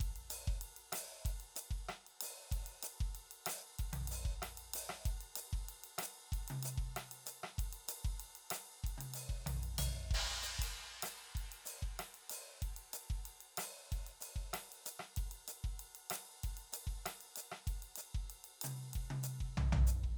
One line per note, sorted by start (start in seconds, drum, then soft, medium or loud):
0.01 kick medium
0.01 ride medium
0.17 ride medium
0.31 hi-hat pedal medium
0.31 ride loud
0.48 kick medium
0.62 ride medium
0.77 ride medium
0.93 cross-stick medium
0.93 hi-hat pedal loud
0.93 ride loud
1.26 kick medium
1.26 ride medium
1.41 ride medium
1.57 hi-hat pedal loud
1.57 ride loud
1.71 kick soft
1.89 cross-stick medium
1.89 ride soft
2.07 ride soft
2.22 hi-hat pedal medium
2.22 ride loud
2.52 kick medium
2.52 ride medium
2.67 ride medium
2.84 hi-hat pedal loud
2.84 ride loud
3.01 kick medium
3.16 ride medium
3.32 ride medium
3.47 cross-stick medium
3.47 hi-hat pedal loud
3.47 ride loud
3.79 kick soft
3.79 ride medium
3.94 floor tom medium
3.94 ride medium
4.08 hi-hat pedal loud
4.08 ride medium
4.26 kick medium
4.43 cross-stick medium
4.43 ride medium
4.58 ride medium
4.74 hi-hat pedal loud
4.74 ride loud
4.90 cross-stick medium
5.06 kick medium
5.06 ride medium
5.22 ride medium
5.36 hi-hat pedal medium
5.36 ride loud
5.54 kick medium
5.69 ride medium
5.85 ride medium
5.99 cross-stick medium
5.99 ride loud
6.03 hi-hat pedal loud
6.33 kick medium
6.33 ride medium
6.49 high tom medium
6.49 ride medium
6.64 hi-hat pedal loud
6.64 ride medium
6.78 kick medium
6.97 cross-stick medium
6.97 ride medium
7.12 ride medium
7.27 hi-hat pedal medium
7.27 ride medium
7.44 cross-stick medium
7.59 kick medium
7.59 ride medium
7.74 ride medium
7.89 hi-hat pedal medium
7.89 ride loud
8.05 kick medium
8.21 ride medium
8.36 ride medium
8.51 cross-stick medium
8.51 hi-hat pedal loud
8.51 ride loud
8.85 kick soft
8.85 ride medium
8.99 high tom medium
8.99 ride medium
9.14 hi-hat pedal medium
9.14 ride medium
9.30 kick soft
9.47 floor tom medium
9.47 ride loud
9.64 ride medium
9.79 floor tom medium
9.79 hi-hat pedal loud
9.79 ride bell loud
10.12 kick medium
10.12 ride loud
10.44 hi-hat pedal medium
10.60 kick soft
10.60 ride loud
11.03 cross-stick medium
11.03 hi-hat pedal medium
11.03 ride loud
11.36 kick soft
11.36 ride medium
11.53 ride medium
11.66 hi-hat pedal medium
11.66 ride medium
11.83 kick soft
11.92 kick soft
12.00 cross-stick medium
12.00 ride medium
12.15 ride medium
12.31 hi-hat pedal loud
12.31 ride loud
12.63 kick soft
12.63 ride medium
12.77 ride medium
12.94 hi-hat pedal loud
12.94 ride loud
13.11 kick medium
13.26 ride medium
13.41 ride medium
13.58 cross-stick medium
13.58 hi-hat pedal loud
13.58 ride loud
13.93 kick soft
13.93 ride medium
14.07 ride medium
14.21 hi-hat pedal medium
14.21 ride medium
14.37 kick soft
14.54 cross-stick medium
14.54 ride loud
14.73 ride medium
14.86 hi-hat pedal loud
14.86 ride medium
15.00 cross-stick medium
15.17 kick medium
15.17 ride medium
15.32 ride medium
15.49 hi-hat pedal medium
15.49 ride medium
15.65 kick soft
15.80 ride medium
15.96 ride medium
16.11 cross-stick medium
16.11 hi-hat pedal loud
16.11 ride loud
16.44 kick soft
16.44 ride medium
16.58 ride medium
16.73 hi-hat pedal medium
16.73 ride loud
16.88 kick soft
17.06 cross-stick medium
17.06 ride loud
17.22 ride medium
17.37 hi-hat pedal loud
17.37 ride medium
17.52 cross-stick medium
17.68 kick medium
17.68 ride medium
17.83 ride medium
17.97 hi-hat pedal loud
17.97 ride medium
18.15 kick soft
18.31 ride medium
18.45 ride medium
18.62 hi-hat pedal loud
18.62 high tom medium
18.62 ride loud
18.94 kick soft
18.94 ride medium
19.11 high tom medium
19.24 hi-hat pedal medium
19.24 ride medium
19.41 kick soft
19.58 floor tom loud
19.73 floor tom loud
19.88 hi-hat pedal loud
19.88 ride medium
20.04 kick soft